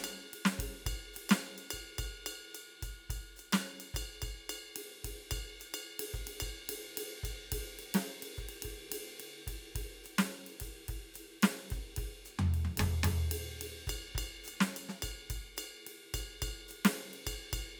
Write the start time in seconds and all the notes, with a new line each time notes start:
0.01 hi-hat pedal, ride bell
0.33 ride
0.45 snare
0.59 kick, hi-hat pedal, ride
0.64 kick
0.67 kick
0.86 kick, ride bell
0.92 kick
0.95 kick
1.14 hi-hat pedal, ride
1.29 snare, ride bell
1.58 ride bell
1.71 kick, hi-hat pedal, ride bell
1.98 kick, ride bell
2.04 kick
2.26 hi-hat pedal, ride bell
2.55 ride bell
2.82 kick, hi-hat pedal, ride bell
3.10 kick, ride bell
3.18 kick
3.36 hi-hat pedal, ride bell
3.53 snare, ride bell
3.80 ride bell
3.94 kick, hi-hat pedal, ride bell
4.00 kick
4.22 kick, ride bell
4.30 kick
4.49 hi-hat pedal, ride bell
4.76 ride
5.04 kick, hi-hat pedal, ride
5.31 kick, ride bell
5.37 kick
5.60 hi-hat pedal, ride bell
5.74 ride bell
5.99 ride
6.14 kick, hi-hat pedal
6.27 ride
6.40 kick, ride bell
6.69 hi-hat pedal, ride
6.97 ride
7.23 kick, hi-hat pedal, ride bell
7.29 kick
7.52 kick, ride
7.60 kick
7.79 hi-hat pedal, ride
7.94 snare, ride
8.22 ride
8.37 kick, hi-hat pedal
8.49 ride
8.62 kick, ride
8.90 snare, hi-hat pedal, ride
9.20 ride
9.47 kick, hi-hat pedal, ride
9.75 kick, ride
9.83 kick
10.04 hi-hat pedal, ride
10.18 snare, ride
10.47 ride
10.60 kick, hi-hat pedal, ride
10.88 kick, ride
11.14 hi-hat pedal, ride
11.43 snare, ride
11.70 kick, hi-hat pedal, ride
11.77 kick
11.80 kick
11.97 kick, ride
12.25 hi-hat pedal, ride bell
12.39 floor tom
12.54 ride
12.65 floor tom
12.77 kick, hi-hat pedal, ride, floor tom
13.03 ride, floor tom
13.12 floor tom
13.31 hi-hat pedal, ride
13.61 ride
13.87 kick, hi-hat pedal, ride bell
13.92 kick
14.15 kick, ride bell
14.24 kick
14.44 hi-hat pedal
14.48 ride bell
14.61 snare
14.76 ride bell
14.89 snare
15.02 kick, hi-hat pedal, ride bell
15.30 kick, snare, ride bell
15.38 kick
15.57 hi-hat pedal, ride bell
15.87 ride
16.14 kick, hi-hat pedal, ride bell
16.42 kick, ride bell
16.50 kick
16.68 hi-hat pedal, ride
16.85 snare, closed hi-hat, ride
17.13 ride
17.27 kick, hi-hat pedal, ride bell
17.53 kick, ride bell
17.61 kick